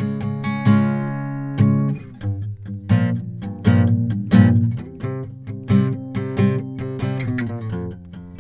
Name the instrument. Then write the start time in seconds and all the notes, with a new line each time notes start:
acoustic guitar
0.00 C#3 G#3
0.22 C#3 G#3
0.42 C#3 C#4
0.46 G#3
0.68 C#3 G#3 C#4 F4
1.60 C#3 G#3 C#4 F4
2.23 G2
2.44 G2
2.67 G2
2.91 A#2 F3
3.18 G2 A#2
3.43 G2 A#2
3.67 G2 A#2 F3
3.89 G2
4.12 G2
4.33 G2 A#2 F3
4.58 G2
4.79 E2 C3
5.02 E2 C3
5.26 C3
5.49 C3
5.70 C3 G3 C4
5.95 C3
6.16 C3 G3
6.39 C3 G3
6.60 C3
6.80 C3
7.01 C3
7.71 F2
7.93 F2
8.15 F2